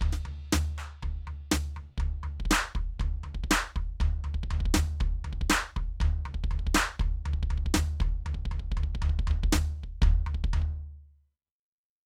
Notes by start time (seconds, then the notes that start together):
0.01 kick, floor tom
0.12 snare
0.25 floor tom
0.53 snare, floor tom
0.78 percussion
1.02 kick, floor tom
1.27 floor tom
1.51 snare, floor tom
1.76 floor tom
1.98 kick, floor tom
2.23 floor tom
2.40 kick
2.45 kick
2.51 snare, percussion
2.75 kick, floor tom
3.00 kick, floor tom
3.23 floor tom
3.35 kick
3.44 kick
3.51 snare, percussion
3.76 kick, floor tom
4.00 kick, floor tom
4.24 floor tom
4.34 kick
4.43 kick
4.51 floor tom
4.60 kick
4.66 kick
4.74 snare, floor tom
5.00 kick, floor tom
5.24 floor tom
5.33 kick
5.41 kick
5.50 snare, percussion
5.76 kick, floor tom
6.00 kick, floor tom
6.25 floor tom
6.34 kick
6.44 kick
6.51 floor tom
6.59 kick
6.67 kick
6.74 snare, percussion
7.00 kick, floor tom
7.26 floor tom
7.33 kick
7.43 kick
7.50 floor tom
7.58 kick
7.66 kick
7.74 snare, floor tom
8.00 kick, floor tom
8.26 floor tom
8.34 kick
8.45 kick
8.51 floor tom
8.59 kick
8.72 kick
8.77 floor tom
8.83 kick
8.95 kick
9.02 floor tom
9.09 kick
9.19 kick
9.27 kick, floor tom
9.44 kick
9.53 kick, snare, floor tom
9.84 kick
10.02 kick, floor tom
10.26 floor tom
10.34 kick
10.44 kick
10.53 floor tom
10.62 kick